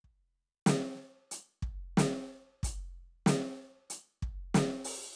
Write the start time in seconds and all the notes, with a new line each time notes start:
0.06 kick
0.66 closed hi-hat, snare
0.95 snare
1.31 closed hi-hat
1.62 kick
1.67 closed hi-hat
1.97 closed hi-hat, snare
2.63 closed hi-hat, kick
3.26 closed hi-hat, snare
3.90 closed hi-hat
4.22 kick, closed hi-hat
4.55 closed hi-hat, snare
4.85 open hi-hat